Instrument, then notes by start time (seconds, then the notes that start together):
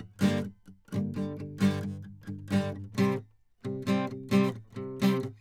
acoustic guitar
0.22 G2 D3 G3 A#3
0.93 G2 D3 G3
0.99 A#3
1.15 D3 G3
1.38 D3 G3
1.62 G2 D3 G3
1.80 G2 D3
2.04 G2
2.28 G2 D3
2.52 G2 D3 G3
2.99 C3 G3 C4
3.65 C3 G3
3.88 C3 G3 C4 E4
4.12 C3
4.32 C3 G3 C4
4.74 C3 G3
5.03 C3 C4
5.24 C3